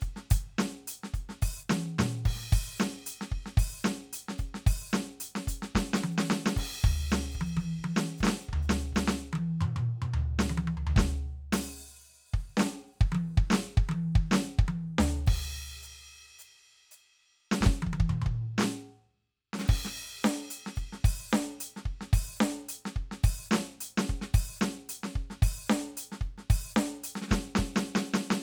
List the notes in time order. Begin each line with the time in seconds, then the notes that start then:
0.01 closed hi-hat, kick
0.16 snare
0.30 closed hi-hat, kick
0.58 snare
0.87 closed hi-hat
1.04 snare
1.14 closed hi-hat, kick
1.29 snare
1.42 open hi-hat, kick
1.60 hi-hat pedal
1.70 snare, high tom
1.99 snare, mid tom
2.25 kick, crash
2.35 snare
2.42 snare
2.52 open hi-hat, kick
2.77 snare, hi-hat pedal
3.06 closed hi-hat
3.21 snare
3.32 kick, closed hi-hat
3.46 snare
3.57 open hi-hat, kick
3.80 snare, hi-hat pedal
4.13 closed hi-hat
4.29 snare
4.38 closed hi-hat, kick
4.54 snare
4.66 open hi-hat, kick
4.90 snare, hi-hat pedal
5.20 closed hi-hat
5.35 snare
5.47 closed hi-hat, kick
5.62 snare
5.75 kick, snare, hi-hat pedal
5.93 snare, hi-hat pedal
6.04 high tom
6.11 hi-hat pedal
6.18 snare
6.30 snare
6.46 snare
6.56 kick, crash
6.84 kick, floor tom
7.09 snare, hi-hat pedal
7.31 kick, hi-hat pedal
7.41 high tom
7.46 hi-hat pedal
7.56 kick, hi-hat pedal, high tom
7.79 kick
7.84 high tom
7.96 snare
8.18 kick, hi-hat pedal
8.23 snare
8.27 snare
8.41 hi-hat pedal
8.49 kick
8.53 floor tom
8.62 hi-hat pedal
8.68 kick, snare
8.80 hi-hat pedal
8.92 kick, snare, hi-hat pedal
9.07 snare, hi-hat pedal
9.33 high tom
9.35 high tom
9.61 mid tom
9.76 mid tom
10.02 mid tom
10.14 floor tom
10.39 snare
10.50 high tom
10.57 high tom
10.67 high tom
10.77 floor tom
10.87 floor tom
10.96 kick, snare
11.52 open hi-hat, snare
12.34 kick
12.57 snare
12.59 snare
13.01 kick
13.12 high tom
13.15 high tom
13.37 kick
13.50 snare
13.53 snare
13.77 kick
13.89 high tom
13.91 high tom
14.15 kick
14.31 snare
14.33 snare
14.59 kick
14.68 high tom
14.98 snare, floor tom
15.27 kick, crash
15.82 hi-hat pedal
16.39 hi-hat pedal
16.91 hi-hat pedal
17.51 snare
17.61 kick, snare
17.66 kick
17.82 high tom
17.86 kick
17.93 high tom
18.00 kick
18.09 kick, mid tom
18.22 mid tom
18.26 kick
18.54 kick, snare
18.61 snare
19.53 snare
19.59 snare, hi-hat pedal
19.64 snare
19.68 kick, crash
19.85 snare
19.96 open hi-hat
20.23 snare, hi-hat pedal
20.50 closed hi-hat
20.66 snare
20.76 closed hi-hat, kick
20.92 snare
21.04 open hi-hat, kick
21.31 snare, hi-hat pedal
21.60 closed hi-hat
21.76 snare
21.85 kick
22.01 snare
22.13 open hi-hat, kick
22.36 hi-hat pedal
22.40 snare
22.69 closed hi-hat
22.85 snare
22.96 kick
23.11 snare
23.24 open hi-hat, kick
23.45 hi-hat pedal
23.51 snare
23.53 snare
23.81 closed hi-hat
23.97 snare
24.09 kick
24.21 snare
24.34 open hi-hat, kick
24.56 hi-hat pedal
24.61 snare
24.89 closed hi-hat
25.03 snare
25.15 kick
25.30 snare
25.42 open hi-hat, kick
25.66 snare, hi-hat pedal
25.97 closed hi-hat
26.12 snare
26.21 kick, closed hi-hat
26.38 snare
26.50 open hi-hat, kick
26.71 hi-hat pedal
26.76 snare
27.04 closed hi-hat
27.15 snare
27.22 snare
27.28 kick, snare
27.31 snare
27.55 kick, snare
27.76 snare
27.95 snare
28.14 snare
28.30 snare